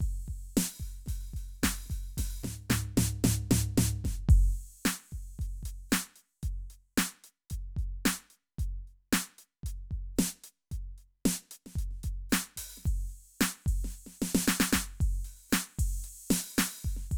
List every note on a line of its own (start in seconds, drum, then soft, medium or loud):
0.01 kick medium
0.01 crash medium
0.26 kick soft
0.26 open hi-hat soft
0.57 open hi-hat loud
0.57 snare loud
0.80 open hi-hat soft
0.80 kick soft
1.06 open hi-hat medium
1.06 kick soft
1.06 snare soft
1.34 open hi-hat soft
1.34 kick soft
1.63 open hi-hat medium
1.63 kick soft
1.63 snare loud
1.86 snare soft
1.90 open hi-hat medium
1.90 kick soft
2.18 open hi-hat loud
2.18 kick medium
2.18 snare soft
2.44 snare medium
2.44 floor tom medium
2.70 snare loud
2.70 floor tom loud
2.98 snare loud
2.98 floor tom loud
3.24 snare loud
3.24 floor tom loud
3.51 snare loud
3.51 floor tom loud
3.78 snare loud
3.78 floor tom loud
4.05 kick medium
4.05 snare medium
4.29 kick loud
4.29 crash loud
4.37 hi-hat pedal soft
4.53 closed hi-hat soft
4.86 closed hi-hat loud
4.86 snare loud
5.12 closed hi-hat soft
5.12 kick soft
5.40 closed hi-hat soft
5.40 kick soft
5.63 closed hi-hat medium
5.63 kick soft
5.90 snare loud
5.90 hi-hat pedal soft
6.16 closed hi-hat medium
6.43 closed hi-hat medium
6.43 kick medium
6.71 closed hi-hat soft
6.98 snare loud
7.24 closed hi-hat medium
7.51 closed hi-hat medium
7.51 kick soft
7.77 kick medium
7.77 closed hi-hat soft
8.06 snare loud
8.31 closed hi-hat soft
8.59 closed hi-hat medium
8.59 kick medium
8.88 closed hi-hat soft
9.13 snare loud
9.39 closed hi-hat medium
9.64 closed hi-hat medium
9.64 kick soft
9.91 kick soft
9.91 closed hi-hat soft
10.16 snare loud
10.16 hi-hat pedal soft
10.44 closed hi-hat medium
10.72 closed hi-hat soft
10.72 kick soft
10.98 closed hi-hat soft
11.26 snare loud
11.52 closed hi-hat medium
11.67 snare soft
11.76 closed hi-hat medium
11.76 kick medium
11.91 snare soft
12.04 open hi-hat medium
12.04 kick soft
12.30 snare loud
12.30 hi-hat pedal medium
12.57 open hi-hat loud
12.57 kick soft
12.78 snare soft
12.84 kick medium
12.84 hi-hat pedal medium
12.84 crash medium
13.10 closed hi-hat soft
13.41 snare loud
13.67 kick medium
13.67 crash loud
13.85 snare soft
13.90 hi-hat pedal medium
13.94 closed hi-hat soft
14.07 snare soft
14.22 snare medium
14.35 snare loud
14.47 snare loud
14.47 hi-hat pedal medium
14.60 snare loud
14.73 kick soft
14.73 snare loud
15.01 kick medium
15.01 crash medium
15.25 open hi-hat soft
15.50 snare loud
15.50 hi-hat pedal medium
15.79 kick medium
15.79 crash loud
16.04 open hi-hat medium
16.31 open hi-hat loud
16.31 snare loud
16.58 open hi-hat loud
16.58 snare loud
16.85 kick medium
16.97 snare soft
17.12 kick medium
17.12 crash medium